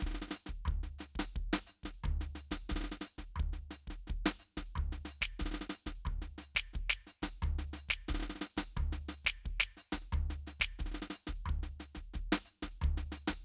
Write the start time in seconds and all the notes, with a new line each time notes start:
0.00 kick, snare
0.06 snare
0.11 snare
0.14 snare
0.21 snare
0.28 snare
0.30 snare, hi-hat pedal
0.46 kick, snare
0.65 kick, floor tom
0.83 snare
0.98 snare, hi-hat pedal
1.15 kick, snare
1.36 kick
1.53 snare
1.66 snare, hi-hat pedal
1.83 kick, snare
2.03 kick, floor tom
2.21 snare
2.35 snare, hi-hat pedal
2.51 kick, snare
2.69 kick, snare
2.76 snare
2.80 snare
2.84 snare
2.91 snare
3.01 snare, hi-hat pedal
3.18 kick, snare
3.35 kick, floor tom
3.53 snare
3.70 snare, hi-hat pedal
3.87 kick, snare
4.07 kick, snare
4.25 snare
4.39 snare, hi-hat pedal
4.57 kick, snare
4.62 kick
4.75 kick, floor tom
4.92 snare
5.05 snare, hi-hat pedal
5.21 kick, snare
5.39 kick, snare
5.45 snare
5.51 snare
5.54 snare
5.61 snare
5.69 snare, hi-hat pedal
5.86 kick, snare
6.05 kick, floor tom
6.21 snare
6.38 snare, hi-hat pedal
6.55 kick, snare
6.73 kick, snare
6.89 snare
7.06 snare, hi-hat pedal
7.22 kick, snare
7.42 kick, floor tom
7.58 snare
7.73 snare, hi-hat pedal
7.88 kick, snare
8.08 kick, snare
8.14 snare
8.19 snare
8.22 snare
8.35 snare
8.41 snare, hi-hat pedal
8.57 kick, snare
8.76 kick, floor tom
8.92 snare
9.08 snare, hi-hat pedal
9.24 kick, snare
9.44 kick, snare
9.60 snare
9.77 snare, hi-hat pedal
9.92 kick, snare
10.01 snare
10.12 kick, floor tom
10.30 snare
10.46 snare, hi-hat pedal
10.60 kick, snare
10.79 kick, snare
10.86 snare
10.91 snare
10.94 snare
11.02 snare
11.10 snare, hi-hat pedal
11.27 kick, snare
11.45 kick, floor tom
11.63 snare
11.79 snare, hi-hat pedal
11.95 kick, snare
12.13 kick, snare
12.32 snare
12.45 snare, hi-hat pedal
12.62 kick, snare
12.81 kick, floor tom
12.97 snare
13.12 snare, hi-hat pedal
13.27 kick, snare